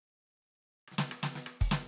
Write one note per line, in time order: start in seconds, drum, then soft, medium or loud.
0.88 cross-stick soft
0.88 snare soft
0.98 snare loud
1.11 cross-stick medium
1.23 snare loud
1.35 snare medium
1.46 cross-stick medium
1.61 open hi-hat loud
1.61 kick medium
1.71 snare loud
1.71 hi-hat pedal medium